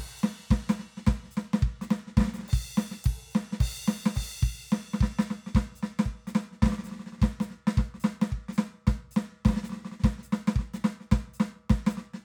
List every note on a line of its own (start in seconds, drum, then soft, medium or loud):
0.18 hi-hat pedal medium
0.24 snare loud
0.52 kick loud
0.52 snare loud
0.70 snare loud
0.70 hi-hat pedal medium
0.80 snare medium
0.98 snare medium
1.08 kick loud
1.08 snare loud
1.25 snare soft
1.32 hi-hat pedal medium
1.38 snare loud
1.54 snare loud
1.63 kick loud
1.67 snare soft
1.82 snare medium
1.82 hi-hat pedal medium
1.92 snare loud
2.08 snare soft
2.18 kick loud
2.18 snare loud
2.25 snare medium
2.35 snare medium
2.35 hi-hat pedal medium
2.40 snare medium
2.44 snare medium
2.49 crash loud
2.54 kick loud
2.78 snare loud
2.78 hi-hat pedal medium
2.92 snare medium
3.04 kick loud
3.04 snare soft
3.04 crash medium
3.31 hi-hat pedal soft
3.36 snare loud
3.53 snare medium
3.61 kick loud
3.61 crash loud
3.83 hi-hat pedal soft
3.89 snare loud
4.07 snare loud
4.16 kick medium
4.16 crash loud
4.44 kick loud
4.44 ride soft
4.69 hi-hat pedal medium
4.73 snare loud
4.94 snare medium
5.02 kick loud
5.02 snare loud
5.20 snare loud
5.20 hi-hat pedal medium
5.31 snare medium
5.47 snare medium
5.56 kick loud
5.56 snare loud
5.76 hi-hat pedal medium
5.84 snare medium
6.00 snare loud
6.07 kick medium
6.28 snare medium
6.28 hi-hat pedal medium
6.36 snare loud
6.53 snare soft
6.63 kick loud
6.63 snare loud
6.67 snare loud
6.71 snare medium
6.73 snare medium
6.79 snare medium
6.85 snare soft
6.85 hi-hat pedal medium
6.88 snare medium
6.92 snare medium
6.96 snare soft
7.00 snare medium
7.07 snare medium
7.13 snare soft
7.19 kick loud
7.19 snare soft
7.24 snare loud
7.41 snare loud
7.41 hi-hat pedal medium
7.51 snare soft
7.68 snare loud
7.78 kick loud
7.78 snare medium
7.95 snare soft
8.01 hi-hat pedal medium
8.05 snare loud
8.23 snare loud
8.33 kick medium
8.49 snare medium
8.54 hi-hat pedal medium
8.59 snare loud
8.88 kick loud
8.88 snare loud
9.12 hi-hat pedal medium
9.17 snare loud
9.46 kick loud
9.46 snare loud
9.50 snare loud
9.53 snare medium
9.57 snare medium
9.64 snare medium
9.64 hi-hat pedal medium
9.70 snare medium
9.73 snare medium
9.78 snare soft
9.82 snare soft
9.86 snare medium
9.93 snare medium
10.01 snare soft
10.05 kick loud
10.05 snare loud
10.19 snare soft
10.24 hi-hat pedal medium
10.33 snare loud
10.48 snare loud
10.57 kick loud
10.57 snare medium
10.75 snare medium
10.75 hi-hat pedal medium
10.85 snare loud
11.01 snare soft
11.12 kick loud
11.12 snare loud
11.29 snare soft
11.35 hi-hat pedal medium
11.41 snare loud
11.71 kick loud
11.71 snare loud
11.88 snare loud
11.88 hi-hat pedal medium
11.98 snare medium
12.15 snare medium